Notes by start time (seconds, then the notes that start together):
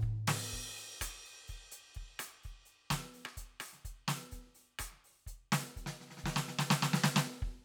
0.01 kick, hi-hat pedal
0.08 kick
0.28 snare, crash
0.53 kick
0.77 open hi-hat
1.01 closed hi-hat, kick, cross-stick
1.26 open hi-hat
1.48 open hi-hat, kick
1.72 open hi-hat
1.95 kick, closed hi-hat
2.20 open hi-hat, cross-stick
2.43 open hi-hat, kick
2.66 open hi-hat
2.91 open hi-hat, kick, snare
3.00 snare
3.14 open hi-hat
3.25 cross-stick
3.37 closed hi-hat, kick
3.60 open hi-hat, cross-stick
3.73 snare
3.85 closed hi-hat, kick
4.08 open hi-hat, snare
4.18 snare
4.32 open hi-hat, kick
4.43 snare
4.47 snare
4.55 open hi-hat
4.79 open hi-hat, kick, cross-stick
4.92 snare
5.04 open hi-hat
5.10 snare
5.27 closed hi-hat, kick
5.52 open hi-hat, snare
5.60 snare
5.77 open hi-hat, kick
5.87 snare
6.01 snare
6.07 snare
6.11 snare
6.17 snare
6.24 kick, snare
6.36 snare
6.48 snare
6.59 snare
6.71 snare
6.83 snare
6.94 snare
7.04 snare
7.16 snare
7.42 kick
7.48 kick